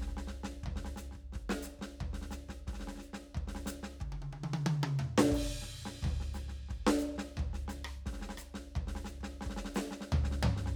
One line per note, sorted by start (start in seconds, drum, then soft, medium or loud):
0.02 snare soft
0.08 snare soft
0.17 snare soft
0.28 snare soft
0.44 kick soft
0.44 snare medium
0.64 kick soft
0.64 floor tom medium
0.76 snare soft
0.85 snare soft
0.96 snare soft
0.96 hi-hat pedal soft
1.12 kick soft
1.12 snare soft
1.33 kick soft
1.33 snare soft
1.50 snare medium
1.63 snare soft
1.63 hi-hat pedal medium
1.79 kick soft
1.79 snare medium
2.01 kick soft
2.01 floor tom medium
2.13 snare soft
2.22 snare soft
2.31 snare soft
2.31 hi-hat pedal soft
2.49 kick soft
2.49 snare soft
2.67 kick soft
2.67 snare soft
2.73 snare soft
2.79 snare soft
2.88 snare soft
2.95 snare soft
2.98 snare soft
3.03 hi-hat pedal soft
3.13 kick soft
3.13 snare medium
3.35 kick soft
3.35 floor tom medium
3.48 snare soft
3.55 snare soft
3.66 snare medium
3.66 hi-hat pedal medium
3.83 snare medium
4.01 kick soft
4.01 high tom soft
4.12 high tom medium
4.22 high tom medium
4.33 high tom medium
4.44 high tom medium
4.54 open hi-hat soft
4.54 high tom loud
4.66 high tom loud
4.83 high tom loud
4.99 mid tom medium
5.18 snare loud
5.29 kick medium
5.29 cross-stick soft
5.35 crash medium
5.62 snare soft
5.82 kick soft
5.82 snare medium
6.03 kick soft
6.03 floor tom loud
6.20 snare soft
6.34 snare soft
6.34 hi-hat pedal soft
6.49 kick soft
6.49 snare soft
6.69 kick soft
6.69 snare soft
6.87 snare loud
6.99 snare soft
6.99 hi-hat pedal soft
7.16 kick soft
7.16 snare medium
7.37 kick soft
7.37 floor tom medium
7.54 snare soft
7.68 snare medium
7.68 hi-hat pedal soft
7.85 kick soft
7.85 cross-stick medium
8.06 kick soft
8.06 snare soft
8.13 snare soft
8.18 snare soft
8.22 snare soft
8.29 snare soft
8.38 cross-stick medium
8.38 hi-hat pedal medium
8.54 kick soft
8.54 snare medium
8.76 kick soft
8.76 floor tom medium
8.87 snare soft
8.96 snare soft
9.05 snare soft
9.05 hi-hat pedal soft
9.21 kick soft
9.21 snare medium
9.41 snare medium
9.46 kick soft
9.46 snare soft
9.57 snare medium
9.65 snare medium
9.75 snare medium
9.75 hi-hat pedal soft
9.84 kick soft
9.91 snare soft
10.01 snare medium
10.12 kick soft
10.12 floor tom loud
10.24 snare soft
10.32 snare soft
10.43 kick soft
10.43 floor tom loud
10.57 snare soft
10.66 snare soft